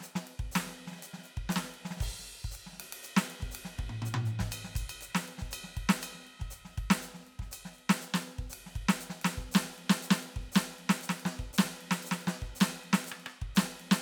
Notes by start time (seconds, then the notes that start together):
0.01 snare, hi-hat pedal, ride
0.16 snare
0.28 ride
0.40 kick
0.45 kick
0.52 snare, hi-hat pedal
0.56 ride
0.61 cross-stick
0.64 cross-stick, snare
0.71 snare
0.88 snare
0.92 snare
0.96 snare
1.03 hi-hat pedal, ride
1.14 snare
1.19 snare
1.24 hi-hat pedal, ride
1.38 kick
1.50 snare, hi-hat pedal, ride
1.56 cross-stick, snare
1.64 snare
1.75 ride
1.85 snare
1.91 snare
1.97 kick, snare
2.02 hi-hat pedal, crash
2.07 kick
2.13 snare
2.19 snare
2.45 kick
2.52 hi-hat pedal, ride
2.67 snare
2.73 snare
2.77 snare
2.80 snare, ride
2.82 snare
2.93 ride
3.03 hi-hat pedal, ride bell
3.17 snare
3.23 cross-stick, hi-hat pedal
3.31 ride
3.40 kick, snare
3.52 hi-hat pedal, ride
3.65 snare
3.79 kick, mid tom
3.90 mid tom
4.03 hi-hat pedal, mid tom
4.15 mid tom
4.26 hi-hat pedal, mid tom
4.40 kick, snare
4.52 hi-hat pedal, ride bell
4.65 snare
4.74 kick, hi-hat pedal, ride bell
4.82 kick
4.90 ride bell
5.02 hi-hat pedal, ride
5.15 snare
5.24 hi-hat pedal
5.28 ride
5.39 kick, snare
5.51 hi-hat pedal, ride bell
5.64 snare
5.73 kick, hi-hat pedal
5.78 ride
5.90 snare
6.02 hi-hat pedal, ride bell
6.15 snare
6.23 hi-hat pedal
6.27 ride
6.40 kick, snare
6.51 hi-hat pedal, ride, floor tom
6.65 snare
6.73 hi-hat pedal
6.78 kick, ride
6.84 kick
6.91 snare
7.02 hi-hat pedal, ride
7.15 snare
7.24 hi-hat pedal, ride
7.40 kick, snare
7.52 hi-hat pedal, ride bell
7.66 snare
7.74 hi-hat pedal
7.79 ride
7.90 snare
8.02 hi-hat pedal
8.14 snare
8.22 hi-hat pedal
8.39 kick
8.50 hi-hat pedal, ride
8.67 snare
8.71 hi-hat pedal
8.76 kick, ride
8.89 snare
9.00 hi-hat pedal, ride
9.10 snare
9.22 snare, hi-hat pedal, ride
9.38 kick
9.52 snare, hi-hat pedal, ride
9.65 snare
9.74 hi-hat pedal
9.79 ride
9.90 snare
10.03 hi-hat pedal, ride
10.11 snare
10.21 hi-hat pedal, ride
10.37 kick
10.53 snare, hi-hat pedal, ride
10.74 hi-hat pedal
10.79 ride
10.90 snare
11.02 hi-hat pedal, ride
11.10 snare
11.20 ride
11.26 snare
11.40 kick
11.54 hi-hat pedal
11.59 snare, ride
11.66 snare
11.76 hi-hat pedal
11.81 ride
11.91 snare
12.03 hi-hat pedal, ride bell
12.12 snare
12.21 ride
12.26 snare, hi-hat pedal
12.42 kick
12.56 hi-hat pedal
12.61 snare, ride bell
12.69 snare
12.79 hi-hat pedal
12.84 ride
12.94 snare
13.05 hi-hat pedal, ride
13.12 cross-stick
13.20 ride
13.27 cross-stick, hi-hat pedal
13.42 kick
13.56 snare, hi-hat pedal, ride
13.63 snare
13.77 hi-hat pedal, ride
13.92 snare